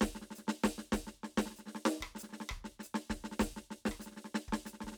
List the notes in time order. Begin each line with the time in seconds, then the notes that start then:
0.01 kick, snare
0.08 kick
0.15 snare
0.21 snare
0.31 snare
0.35 snare, hi-hat pedal
0.47 snare
0.64 kick, snare
0.78 snare
0.92 kick, snare, hi-hat pedal
1.07 snare
1.23 snare
1.37 kick, snare
1.46 snare
1.50 snare
1.56 snare, hi-hat pedal
1.66 snare
1.67 snare
1.75 snare
1.85 snare
2.01 kick, cross-stick
2.15 snare, hi-hat pedal
2.23 snare
2.29 snare
2.33 snare
2.40 snare
2.49 kick, cross-stick
2.64 snare
2.79 snare, hi-hat pedal
2.94 snare
3.10 kick, snare
3.24 snare
3.32 snare
3.39 kick, snare, hi-hat pedal
3.49 kick
3.56 snare
3.71 snare
3.85 kick, snare
3.91 cross-stick
3.99 snare, hi-hat pedal
4.06 snare
4.11 snare
4.17 snare
4.24 snare
4.35 snare
4.48 kick
4.52 snare
4.65 snare, hi-hat pedal
4.73 snare
4.81 kick, snare
4.87 snare
4.92 snare